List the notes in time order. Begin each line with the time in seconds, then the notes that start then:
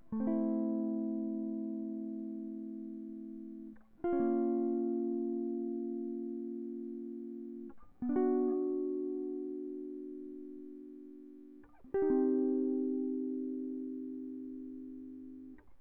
0.13 A3
0.20 C4
0.27 E4
4.04 F4
4.13 C#4
4.20 A#3
8.03 B3
8.09 D4
8.16 F#4
11.94 G4
12.02 D#4
12.10 C4